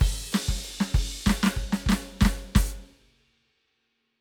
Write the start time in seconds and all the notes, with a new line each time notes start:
0.01 kick, hi-hat pedal, crash
0.32 snare, hi-hat pedal, ride
0.49 kick, snare
0.55 snare
0.60 snare, hi-hat pedal
0.64 ride
0.81 snare
0.95 kick, ride
1.26 kick, snare
1.30 snare
1.43 snare
1.47 snare
1.57 kick
1.73 snare
1.87 kick, snare, hi-hat pedal
1.92 snare
2.20 kick, snare, hi-hat pedal
2.25 snare
2.55 open hi-hat, kick, snare
2.70 hi-hat pedal